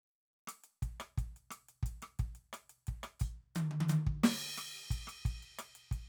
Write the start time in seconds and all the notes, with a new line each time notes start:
0.47 cross-stick, closed hi-hat
0.64 closed hi-hat
0.82 kick, closed hi-hat
1.00 cross-stick, closed hi-hat
1.18 kick, closed hi-hat
1.36 closed hi-hat
1.51 cross-stick, closed hi-hat
1.69 closed hi-hat
1.83 kick, closed hi-hat
2.02 cross-stick, closed hi-hat
2.19 kick, closed hi-hat
2.35 closed hi-hat
2.53 cross-stick, closed hi-hat
2.69 closed hi-hat
2.87 kick, closed hi-hat
3.03 cross-stick, closed hi-hat
3.20 closed hi-hat, kick
3.55 hi-hat pedal, high tom
3.71 high tom
3.80 high tom
3.89 hi-hat pedal, high tom
4.07 kick
4.24 snare, crash
4.57 closed hi-hat, cross-stick
4.76 closed hi-hat
4.91 kick, closed hi-hat
5.07 cross-stick, closed hi-hat
5.25 kick, closed hi-hat
5.42 closed hi-hat
5.59 cross-stick, closed hi-hat
5.75 closed hi-hat
5.91 kick, closed hi-hat